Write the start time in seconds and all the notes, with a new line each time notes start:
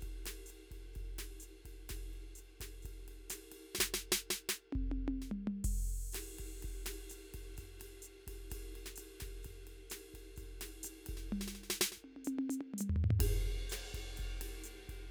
0.01 kick, hi-hat pedal, ride
0.08 kick
0.26 snare, ride
0.46 hi-hat pedal
0.50 ride
0.71 kick, ride
0.94 kick, hi-hat pedal, ride
1.01 kick
1.19 snare, ride
1.40 hi-hat pedal, ride
1.65 kick, ride
1.89 kick, snare, hi-hat pedal, ride
1.96 kick
2.14 ride
2.36 hi-hat pedal, ride
2.61 kick, snare, ride
2.83 kick, hi-hat pedal, ride
2.90 kick
3.08 ride
3.30 snare, hi-hat pedal, ride
3.52 ride
3.75 kick, snare
3.81 snare
3.94 snare
4.12 snare
4.31 snare
4.49 snare
4.73 kick, high tom
4.82 kick
4.92 high tom
5.08 high tom
5.22 snare
5.32 mid tom
5.48 mid tom
5.65 kick, crash
6.13 snare, hi-hat pedal, ride
6.16 snare
6.39 kick, ride
6.61 kick, hi-hat pedal, ride
6.70 kick, snare
6.86 snare, ride
7.10 hi-hat pedal, ride
7.34 kick, ride
7.57 kick, hi-hat pedal, ride
7.64 kick
7.80 snare, ride
8.02 hi-hat pedal, ride
8.28 kick, ride
8.51 kick, snare, hi-hat pedal, ride
8.57 kick
8.76 snare, ride
8.86 snare
8.96 hi-hat pedal, ride
9.20 kick, snare, ride
9.28 kick
9.43 kick, hi-hat pedal, ride
9.51 kick
9.67 ride
9.90 snare, hi-hat pedal, ride
10.14 kick, ride
10.37 kick, hi-hat pedal, ride
10.43 kick
10.61 snare, ride
10.83 hi-hat pedal, ride
11.07 kick, ride
11.15 kick, snare
11.33 mid tom
11.41 snare
11.48 snare
11.55 snare
11.64 snare
11.70 snare
11.81 snare
11.92 snare
11.98 kick
12.05 high tom
12.17 high tom
12.25 hi-hat pedal, high tom
12.39 high tom
12.50 hi-hat pedal, high tom
12.61 high tom
12.74 mid tom
12.78 hi-hat pedal, mid tom
12.90 floor tom
12.96 floor tom
13.05 floor tom
13.11 floor tom
13.20 kick, ride
13.70 snare, hi-hat pedal, ride
13.94 kick, ride
14.00 kick
14.16 kick, hi-hat pedal, ride
14.25 kick
14.42 snare, ride
14.64 hi-hat pedal, ride
14.89 kick, ride